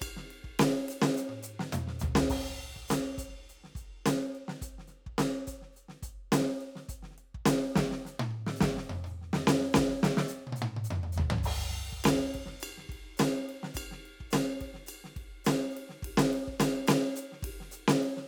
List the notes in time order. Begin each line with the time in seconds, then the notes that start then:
0.01 kick, hi-hat pedal, ride bell
0.07 kick
0.10 kick
0.17 snare
0.30 ride
0.44 kick
0.59 snare, hi-hat pedal, ride
0.69 snare
0.88 hi-hat pedal, ride
1.02 snare
1.15 hi-hat pedal, ride
1.29 high tom
1.43 hi-hat pedal
1.59 snare
1.68 kick
1.72 hi-hat pedal, mid tom
1.87 snare
1.99 kick, floor tom, hi-hat pedal
2.11 kick
2.15 snare
2.30 kick, hi-hat pedal, crash
2.39 kick
2.49 snare
2.76 kick
2.88 closed hi-hat, snare, hi-hat pedal
3.00 snare
3.18 closed hi-hat, kick
3.24 kick
3.28 snare
3.49 closed hi-hat
3.64 snare
3.75 closed hi-hat, kick
4.06 closed hi-hat, snare
4.16 snare
4.35 closed hi-hat
4.48 snare
4.62 closed hi-hat, kick
4.67 kick
4.78 snare
4.87 closed hi-hat, snare
5.06 kick
5.18 closed hi-hat, snare
5.47 open hi-hat, kick
5.62 snare
5.73 closed hi-hat, hi-hat pedal
5.89 snare
6.03 closed hi-hat, kick
6.08 kick
6.32 closed hi-hat, snare
6.41 snare
6.61 closed hi-hat
6.75 snare
6.89 closed hi-hat, kick
6.94 kick
7.03 snare
7.11 snare
7.18 closed hi-hat
7.34 kick
7.46 closed hi-hat, snare
7.55 snare
7.76 kick, snare
7.91 snare
8.05 snare, hi-hat pedal
8.20 high tom
8.31 cross-stick
8.47 snare
8.56 hi-hat pedal
8.61 kick, snare
8.68 kick
8.71 kick
8.77 snare
8.83 kick, hi-hat pedal
8.90 mid tom
9.04 hi-hat pedal, open hi-hat, high tom
9.22 snare
9.33 snare
9.47 snare
9.61 snare
9.73 snare, hi-hat pedal
9.77 kick
9.86 kick, snare
10.03 snare
10.17 snare
10.28 hi-hat pedal
10.47 high tom
10.53 hi-hat pedal, high tom
10.62 high tom
10.77 high tom
10.84 hi-hat pedal
10.91 mid tom
11.03 mid tom
11.12 hi-hat pedal
11.16 kick, floor tom
11.30 floor tom
11.38 floor tom
11.43 kick, hi-hat pedal, crash
11.70 snare
11.93 kick
12.01 kick, ride bell
12.05 snare, hi-hat pedal
12.17 snare
12.34 kick, ride
12.41 kick
12.46 snare
12.60 hi-hat pedal, ride bell
12.78 snare
12.89 kick, ride
12.95 kick
13.17 snare, hi-hat pedal, ride bell
13.49 ride
13.63 snare
13.74 kick, hi-hat pedal, ride bell
13.80 kick
13.83 kick
13.91 snare
14.05 ride
14.20 kick
14.31 snare, hi-hat pedal, ride bell
14.44 snare
14.61 kick, ride
14.74 snare
14.86 hi-hat pedal, ride bell
15.04 snare
15.16 kick, ride
15.22 kick
15.44 snare, hi-hat pedal, ride bell
15.70 hi-hat pedal
15.77 ride
15.89 snare
16.02 kick, ride
16.08 kick
16.12 kick
16.17 snare
16.33 ride
16.48 kick
16.60 snare, hi-hat pedal, ride bell
16.87 snare, hi-hat pedal, ride bell
17.16 hi-hat pedal, ride
17.32 snare
17.40 kick, hi-hat pedal
17.44 ride
17.50 kick
17.53 kick
17.60 snare
17.71 hi-hat pedal
17.75 ride
17.88 snare
18.03 ride
18.17 snare